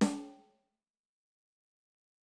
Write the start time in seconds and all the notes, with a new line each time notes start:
0.01 closed hi-hat, snare